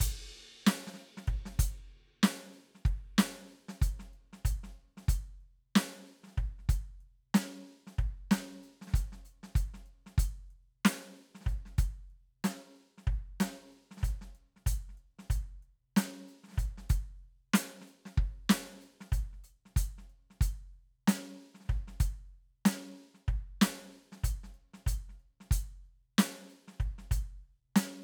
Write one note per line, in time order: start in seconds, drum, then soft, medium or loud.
0.01 closed hi-hat loud
0.01 kick medium
0.67 snare loud
0.67 closed hi-hat loud
0.88 snare soft
0.95 snare soft
0.97 snare soft
0.97 closed hi-hat soft
1.18 snare soft
1.28 kick medium
1.28 closed hi-hat soft
1.46 snare soft
1.60 closed hi-hat loud
1.60 kick medium
2.24 snare loud
2.24 closed hi-hat medium
2.54 closed hi-hat soft
2.76 snare soft
2.86 kick medium
2.86 closed hi-hat soft
3.19 closed hi-hat medium
3.19 snare loud
3.51 closed hi-hat soft
3.69 snare medium
3.82 closed hi-hat medium
3.82 kick medium
4.00 snare soft
4.14 closed hi-hat soft
4.34 snare soft
4.45 closed hi-hat medium
4.45 kick medium
4.64 snare soft
4.77 closed hi-hat soft
4.98 snare soft
5.09 closed hi-hat medium
5.09 kick medium
5.41 closed hi-hat soft
5.76 closed hi-hat medium
5.76 snare loud
6.08 closed hi-hat soft
6.24 snare soft
6.28 snare soft
6.38 kick medium
6.38 closed hi-hat soft
6.59 snare soft
6.70 closed hi-hat medium
6.70 kick medium
7.01 closed hi-hat soft
7.35 closed hi-hat medium
7.35 snare loud
7.88 snare soft
7.99 kick medium
7.99 closed hi-hat soft
8.32 closed hi-hat medium
8.32 snare loud
8.64 closed hi-hat soft
8.82 snare soft
8.88 snare soft
8.92 kick medium
8.92 snare soft
8.95 closed hi-hat medium
8.95 snare soft
9.13 snare soft
9.26 closed hi-hat soft
9.44 snare soft
9.56 closed hi-hat medium
9.56 kick medium
9.74 snare soft
9.87 closed hi-hat soft
10.07 snare soft
10.18 closed hi-hat medium
10.18 kick medium
10.51 closed hi-hat soft
10.86 closed hi-hat medium
10.86 snare loud
11.35 snare soft
11.41 snare soft
11.45 closed hi-hat soft
11.45 kick medium
11.45 snare soft
11.66 snare soft
11.79 closed hi-hat medium
11.79 kick medium
12.11 closed hi-hat soft
12.45 closed hi-hat medium
12.45 snare loud
12.77 closed hi-hat soft
12.98 snare soft
13.08 kick medium
13.08 closed hi-hat soft
13.41 closed hi-hat medium
13.41 snare loud
13.73 closed hi-hat soft
13.92 snare soft
13.98 snare soft
14.01 snare soft
14.03 closed hi-hat medium
14.03 kick medium
14.03 snare soft
14.22 snare soft
14.36 closed hi-hat soft
14.57 snare soft
14.67 closed hi-hat medium
14.67 kick medium
14.89 snare soft
14.98 closed hi-hat soft
15.19 snare soft
15.31 closed hi-hat medium
15.31 kick medium
15.63 closed hi-hat soft
15.97 closed hi-hat medium
15.97 snare loud
16.29 closed hi-hat soft
16.44 snare soft
16.49 snare soft
16.52 snare soft
16.54 snare soft
16.58 closed hi-hat soft
16.58 kick medium
16.78 snare soft
16.90 closed hi-hat medium
16.90 kick medium
17.54 closed hi-hat loud
17.54 snare loud
17.82 snare soft
17.88 closed hi-hat soft
18.06 snare soft
18.18 kick medium
18.50 closed hi-hat medium
18.50 snare loud
18.77 snare soft
18.79 closed hi-hat soft
18.79 snare soft
19.01 snare soft
19.13 closed hi-hat medium
19.13 kick medium
19.33 snare soft
19.45 closed hi-hat soft
19.66 snare soft
19.77 closed hi-hat medium
19.77 kick medium
19.99 snare soft
20.10 closed hi-hat soft
20.31 snare soft
20.41 closed hi-hat medium
20.41 kick medium
20.74 closed hi-hat soft
21.08 closed hi-hat loud
21.08 snare loud
21.40 closed hi-hat soft
21.55 snare soft
21.61 snare soft
21.66 snare soft
21.68 kick medium
21.68 snare soft
21.68 closed hi-hat soft
21.71 snare soft
21.88 snare soft
22.01 closed hi-hat medium
22.01 kick medium
22.66 closed hi-hat loud
22.66 snare loud
22.98 closed hi-hat soft
23.15 snare soft
23.29 kick medium
23.29 closed hi-hat soft
23.62 closed hi-hat loud
23.62 snare loud
23.93 snare soft
24.13 snare soft
24.17 snare soft
24.23 closed hi-hat medium
24.23 kick medium
24.23 snare soft
24.44 snare soft
24.55 closed hi-hat soft
24.74 snare soft
24.87 closed hi-hat medium
24.87 kick medium
25.10 snare soft
25.20 closed hi-hat soft
25.41 snare soft
25.52 closed hi-hat loud
25.52 kick medium
25.86 closed hi-hat soft
26.19 closed hi-hat loud
26.19 snare loud
26.50 closed hi-hat soft
26.68 snare soft
26.73 snare soft
26.80 kick medium
26.80 closed hi-hat soft
26.99 snare soft
27.12 closed hi-hat medium
27.12 kick medium
27.76 closed hi-hat loud
27.76 snare loud